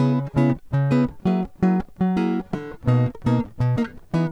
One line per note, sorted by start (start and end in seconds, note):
0.00 0.31 C#3
0.00 0.23 B3
0.00 0.24 E4
0.00 0.18 G#4
0.38 0.60 C#3
0.38 0.58 B3
0.38 0.57 E4
0.75 1.09 C#3
0.92 1.10 B3
0.92 1.09 E4
0.92 1.08 G#4
1.26 1.49 F#3
1.26 1.46 A#3
1.26 1.44 E4
1.26 1.43 G#4
1.64 1.86 F#3
1.64 1.84 A#3
1.64 1.81 E4
1.64 1.87 G#4
2.02 2.47 F#3
2.18 2.43 A#3
2.18 2.44 E4
2.18 2.36 G#4
2.54 2.80 D3
2.89 3.13 B2
2.89 3.13 A#3
2.89 3.12 D#4
2.89 3.12 F#4
3.27 3.46 B2
3.27 3.47 A#3
3.27 3.44 D#4
3.62 3.79 B2
3.79 3.89 A#3
3.79 3.88 D#4
3.79 3.91 F#4
4.15 4.30 E3
4.15 4.31 B3
4.15 4.30 D#4
4.15 4.30 G#4